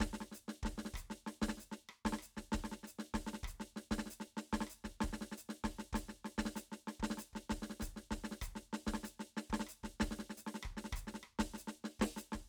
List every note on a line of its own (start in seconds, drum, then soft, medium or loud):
0.01 kick soft
0.01 snare medium
0.14 snare soft
0.21 snare soft
0.32 snare soft
0.32 hi-hat pedal medium
0.49 snare soft
0.64 kick soft
0.64 snare soft
0.72 kick soft
0.79 snare soft
0.86 snare soft
0.95 kick soft
0.95 cross-stick medium
0.95 hi-hat pedal medium
1.11 snare soft
1.27 snare soft
1.43 kick soft
1.43 snare medium
1.49 snare soft
1.58 snare soft
1.58 hi-hat pedal soft
1.72 snare soft
1.90 cross-stick soft
2.06 kick soft
2.06 snare medium
2.13 snare medium
2.20 cross-stick soft
2.20 hi-hat pedal medium
2.38 kick soft
2.38 snare soft
2.53 kick soft
2.53 snare medium
2.65 snare soft
2.72 snare soft
2.84 snare soft
2.88 hi-hat pedal medium
2.99 snare soft
3.15 kick soft
3.15 snare medium
3.27 snare soft
3.34 snare soft
3.44 kick soft
3.44 cross-stick medium
3.48 hi-hat pedal medium
3.61 snare soft
3.77 snare soft
3.92 kick soft
3.92 snare medium
3.99 snare soft
4.07 snare soft
4.11 hi-hat pedal medium
4.21 snare soft
4.38 snare soft
4.54 kick soft
4.54 snare medium
4.61 snare medium
4.68 cross-stick soft
4.68 hi-hat pedal medium
4.85 kick soft
4.85 snare soft
5.01 kick soft
5.01 snare medium
5.14 snare soft
5.22 snare soft
5.32 snare soft
5.38 hi-hat pedal medium
5.50 snare soft
5.65 kick soft
5.65 snare medium
5.79 snare soft
5.93 kick soft
5.93 snare medium
5.93 hi-hat pedal medium
6.09 snare soft
6.25 snare soft
6.39 kick soft
6.39 snare medium
6.46 snare medium
6.57 snare soft
6.57 hi-hat pedal medium
6.73 snare soft
6.88 snare soft
7.00 kick soft
7.00 snare medium
7.11 snare medium
7.18 snare soft
7.18 hi-hat pedal medium
7.34 kick soft
7.34 snare soft
7.50 kick soft
7.50 snare medium
7.63 snare soft
7.71 snare soft
7.81 kick soft
7.81 snare soft
7.81 hi-hat pedal medium
7.97 snare soft
8.12 kick soft
8.12 snare medium
8.25 snare soft
8.32 snare soft
8.42 kick soft
8.42 cross-stick medium
8.42 hi-hat pedal medium
8.56 snare soft
8.74 snare soft
8.88 kick soft
8.88 snare medium
8.95 snare soft
9.04 snare soft
9.04 hi-hat pedal medium
9.20 snare soft
9.38 snare soft
9.51 kick soft
9.51 snare medium
9.60 snare soft
9.68 cross-stick soft
9.68 hi-hat pedal medium
9.84 kick soft
9.84 snare soft
10.01 kick soft
10.01 snare medium
10.12 snare soft
10.20 snare soft
10.30 snare soft
10.38 snare soft
10.38 hi-hat pedal medium
10.47 snare soft
10.55 snare soft
10.64 kick soft
10.64 cross-stick medium
10.78 snare soft
10.85 snare soft
10.92 kick soft
10.92 cross-stick medium
10.92 snare soft
10.97 hi-hat pedal medium
11.01 kick soft
11.08 snare soft
11.15 snare soft
11.24 cross-stick soft
11.40 kick soft
11.40 snare medium
11.55 snare soft
11.59 hi-hat pedal medium
11.68 snare soft
11.85 snare soft
12.00 kick soft
12.00 snare medium
12.17 snare soft
12.17 hi-hat pedal medium
12.33 kick soft
12.33 snare soft